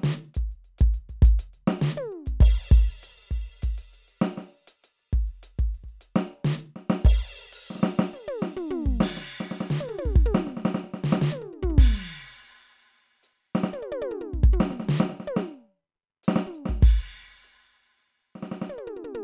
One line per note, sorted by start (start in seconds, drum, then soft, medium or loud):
0.01 snare soft
0.04 snare loud
0.35 closed hi-hat loud
0.35 kick medium
0.52 closed hi-hat soft
0.65 closed hi-hat soft
0.79 closed hi-hat loud
0.79 kick loud
0.95 closed hi-hat medium
1.10 kick soft
1.10 closed hi-hat soft
1.23 closed hi-hat loud
1.23 kick loud
1.40 closed hi-hat loud
1.54 closed hi-hat soft
1.68 snare loud
1.82 snare loud
1.98 high tom loud
2.06 hi-hat pedal soft
2.12 mid tom soft
2.27 kick medium
2.27 closed hi-hat medium
2.41 kick loud
2.41 crash loud
2.57 closed hi-hat soft
2.72 kick loud
2.72 closed hi-hat soft
2.89 closed hi-hat soft
3.04 closed hi-hat loud
3.19 closed hi-hat soft
3.32 kick medium
3.32 closed hi-hat soft
3.50 closed hi-hat soft
3.63 closed hi-hat loud
3.63 kick medium
3.79 closed hi-hat loud
3.94 closed hi-hat medium
4.09 closed hi-hat medium
4.22 closed hi-hat loud
4.22 snare loud
4.38 snare medium
4.50 closed hi-hat soft
4.68 closed hi-hat loud
4.85 closed hi-hat medium
5.00 closed hi-hat soft
5.14 kick medium
5.14 closed hi-hat soft
5.29 closed hi-hat soft
5.44 closed hi-hat loud
5.60 kick medium
5.60 closed hi-hat medium
5.75 closed hi-hat soft
5.84 kick soft
5.89 closed hi-hat soft
6.02 closed hi-hat loud
6.17 snare loud
6.33 closed hi-hat soft
6.46 snare loud
6.59 closed hi-hat loud
6.77 snare soft
6.91 snare loud
7.05 kick loud
7.05 crash loud
7.54 open hi-hat loud
7.71 snare soft
7.76 snare soft
7.76 hi-hat pedal soft
7.80 snare soft
7.84 snare loud
8.00 snare loud
8.14 high tom medium
8.28 high tom loud
8.43 snare medium
8.57 floor tom loud
8.71 floor tom loud
8.87 kick medium
9.01 snare loud
9.01 crash loud
9.18 snare soft
9.41 snare medium
9.52 snare medium
9.61 snare medium
9.71 snare loud
9.76 hi-hat pedal soft
9.81 high tom loud
9.89 mid tom medium
9.99 high tom loud
10.06 kick medium
10.17 kick loud
10.26 mid tom loud
10.36 snare loud
10.48 snare soft
10.58 snare medium
10.66 snare loud
10.75 snare medium
10.85 snare soft
10.95 snare medium
11.05 snare loud
11.13 snare loud
11.22 snare loud
11.30 hi-hat pedal soft
11.30 high tom loud
11.42 mid tom medium
11.53 mid tom soft
11.63 kick medium
11.63 floor tom loud
11.70 floor tom medium
11.79 kick loud
11.79 crash loud
13.24 hi-hat pedal medium
13.56 snare loud
13.64 snare loud
13.74 high tom loud
13.83 high tom medium
13.92 high tom loud
14.02 high tom loud
14.12 mid tom medium
14.21 mid tom medium
14.34 kick soft
14.53 floor tom loud
14.61 snare loud
14.71 snare medium
14.81 snare medium
14.89 snare loud
15.01 snare loud
15.10 snare medium
15.21 snare soft
15.28 high tom loud
15.37 snare loud
16.24 hi-hat pedal loud
16.29 snare loud
16.37 snare loud
16.47 floor tom medium
16.55 closed hi-hat medium
16.66 kick medium
16.66 snare medium
16.83 kick loud
16.83 crash medium
17.45 hi-hat pedal medium
17.98 hi-hat pedal soft
18.36 snare soft
18.43 snare medium
18.52 snare medium
18.70 high tom medium
18.76 hi-hat pedal soft
18.76 high tom medium
18.88 mid tom medium
18.97 mid tom medium
19.05 mid tom medium
19.15 mid tom loud